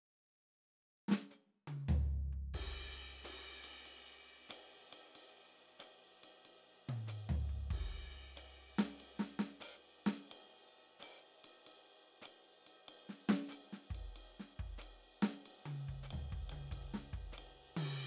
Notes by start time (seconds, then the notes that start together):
1.08 snare
1.11 snare
1.30 hi-hat pedal
1.67 high tom
1.88 floor tom
2.32 kick
2.54 kick, crash, ride
3.24 hi-hat pedal, ride
3.64 ride
3.85 ride
4.49 hi-hat pedal, ride
4.92 ride
5.15 ride
5.79 hi-hat pedal, ride
6.23 ride
6.45 ride
6.89 mid tom
7.07 hi-hat pedal, ride
7.29 floor tom
7.49 kick
7.70 kick, ride
8.36 hi-hat pedal, ride
8.78 snare, ride
9.00 ride
9.19 snare
9.39 snare
9.60 hi-hat pedal, ride
10.06 snare, ride
10.31 ride
10.99 hi-hat pedal, ride
11.44 ride
11.66 ride
12.22 hi-hat pedal, ride
12.66 ride
12.88 ride
13.09 snare
13.29 snare
13.48 hi-hat pedal, ride
13.72 snare
13.90 kick
13.94 ride
14.16 ride
14.39 snare
14.59 kick
14.78 hi-hat pedal, ride
15.22 snare, ride
15.45 ride
15.65 high tom
15.88 kick
16.03 hi-hat pedal
16.10 floor tom, ride
16.32 kick
16.49 high tom, ride
16.71 kick, ride
16.94 snare
17.13 kick
17.32 hi-hat pedal
17.38 ride
17.76 high tom, ride
18.00 ride